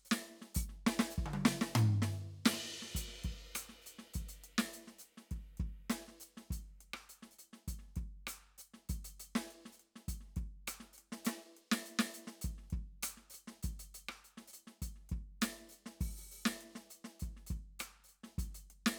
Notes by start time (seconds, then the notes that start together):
0.05 hi-hat pedal
0.12 snare
0.42 snare
0.55 open hi-hat, kick, hi-hat pedal
0.63 kick
0.66 kick, snare
0.87 snare
1.00 snare
1.11 hi-hat pedal
1.18 kick
1.25 kick, mid tom
1.28 kick
1.34 closed hi-hat, high tom
1.46 snare
1.62 snare
1.76 hi-hat pedal, floor tom
2.02 snare
2.12 hi-hat pedal
2.46 snare, crash
2.54 snare
2.83 snare
2.92 kick, hi-hat pedal
2.97 closed hi-hat
3.08 snare
3.12 snare
3.24 kick, closed hi-hat
3.32 kick
3.55 closed hi-hat, cross-stick
3.69 snare
3.82 hi-hat pedal
3.87 closed hi-hat
3.99 snare
4.14 closed hi-hat, kick
4.22 kick
4.29 closed hi-hat
4.44 closed hi-hat
4.59 snare
4.67 snare
4.74 closed hi-hat
4.88 snare
4.99 hi-hat pedal
5.03 closed hi-hat
5.18 snare
5.31 kick, closed hi-hat
5.36 snare
5.40 snare
5.43 snare
5.58 kick, closed hi-hat
5.70 kick
5.90 closed hi-hat, snare
6.08 snare
6.21 hi-hat pedal
6.37 snare
6.51 closed hi-hat, kick, snare
6.81 closed hi-hat
6.94 cross-stick
7.10 closed hi-hat
7.23 snare
7.31 hi-hat pedal
7.39 closed hi-hat
7.53 snare
7.68 closed hi-hat, kick
7.79 snare
7.84 snare
7.88 snare
7.90 snare
7.96 kick, closed hi-hat
8.27 open hi-hat, cross-stick
8.58 hi-hat pedal, open hi-hat
8.74 snare
8.85 snare
8.89 closed hi-hat, kick
9.05 closed hi-hat
9.20 closed hi-hat
9.36 snare
9.51 closed hi-hat
9.66 snare
9.73 hi-hat pedal
9.80 closed hi-hat
9.96 snare
10.09 closed hi-hat, kick
10.21 snare
10.25 snare
10.28 snare
10.37 kick, closed hi-hat
10.46 kick
10.68 closed hi-hat, cross-stick
10.80 snare
10.94 hi-hat pedal
10.98 closed hi-hat
11.12 snare
11.25 closed hi-hat, snare
11.57 closed hi-hat
11.72 snare
11.86 closed hi-hat
11.99 snare
12.14 closed hi-hat
12.28 snare
12.42 closed hi-hat, kick
12.58 snare
12.63 snare
12.71 kick, closed hi-hat
12.82 kick
13.03 closed hi-hat, cross-stick
13.18 snare
13.30 closed hi-hat, hi-hat pedal
13.48 snare
13.63 closed hi-hat, kick, snare
13.68 snare
13.80 closed hi-hat
13.95 closed hi-hat
14.09 cross-stick
14.25 closed hi-hat
14.38 snare
14.48 hi-hat pedal
14.54 closed hi-hat
14.68 snare
14.82 closed hi-hat, kick
14.96 snare
15.01 snare
15.05 snare
15.10 kick, closed hi-hat
15.21 kick
15.42 closed hi-hat, snare
15.54 snare
15.69 closed hi-hat, hi-hat pedal
15.86 snare
16.00 open hi-hat, kick, snare
16.11 kick
16.17 open hi-hat
16.32 open hi-hat
16.46 snare
16.61 closed hi-hat
16.76 snare
16.90 closed hi-hat, hi-hat pedal
17.05 snare
17.20 closed hi-hat, kick
17.37 snare
17.47 closed hi-hat, kick
17.57 kick
17.60 kick
17.80 closed hi-hat, cross-stick
18.04 hi-hat pedal
18.09 closed hi-hat
18.24 snare
18.39 closed hi-hat, kick, snare
18.45 kick, snare
18.48 kick, snare
18.52 closed hi-hat, snare
18.71 closed hi-hat
18.87 snare